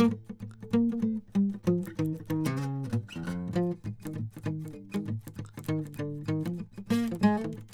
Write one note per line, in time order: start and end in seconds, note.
0.00 0.11 A#3
0.74 0.92 A#3
0.94 1.03 A#3
1.04 1.25 A3
1.36 1.52 G3
1.68 1.85 F3
2.00 2.19 D#3
2.31 2.55 D#3
2.47 2.60 C3
2.95 3.03 B2
3.18 3.26 E2
3.29 3.60 F2
3.57 3.78 F3
3.85 4.01 D#3
4.06 4.13 D#3
4.15 4.31 D#3
4.47 4.66 D#3
4.66 4.74 D#3
4.75 4.84 D3
4.96 5.19 D#3
5.70 5.85 D#3
5.87 6.00 D3
6.00 6.25 D3
6.29 6.46 D#3
6.47 6.68 F3
6.92 7.12 A#3
7.13 7.21 E3
7.24 7.38 G#3
7.38 7.45 A3
7.46 7.56 D#3